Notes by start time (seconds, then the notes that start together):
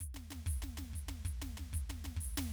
0.00 kick, hi-hat pedal
0.14 snare, floor tom
0.30 snare, floor tom
0.46 kick, hi-hat pedal
0.62 snare, floor tom
0.77 snare, floor tom
0.93 kick, hi-hat pedal
1.08 snare, floor tom
1.25 kick, hi-hat pedal
1.41 snare, floor tom
1.57 snare, floor tom
1.73 kick, hi-hat pedal
1.89 snare, floor tom
2.04 snare, floor tom
2.16 kick
2.20 hi-hat pedal
2.37 snare, floor tom